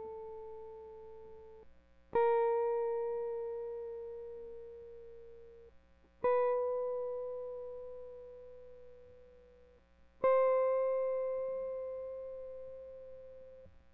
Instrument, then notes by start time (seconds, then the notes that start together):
electric guitar
2.15 A#4
6.24 B4
10.24 C5